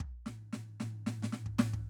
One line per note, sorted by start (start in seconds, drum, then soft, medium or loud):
0.01 kick medium
0.26 snare medium
0.26 floor tom medium
0.53 snare medium
0.53 floor tom medium
0.80 snare medium
0.80 floor tom medium
1.07 snare medium
1.07 floor tom medium
1.23 snare medium
1.23 floor tom medium
1.33 snare medium
1.33 floor tom medium
1.46 kick soft
1.59 snare loud
1.59 floor tom loud
1.74 kick medium